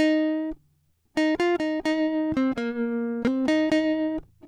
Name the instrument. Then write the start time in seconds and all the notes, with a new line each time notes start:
acoustic guitar
0.01 D#4
1.18 D#4
1.41 F4
1.61 D#4
1.86 D#4
2.38 C4
2.59 A#3
3.26 C4
3.49 D#4
3.73 D#4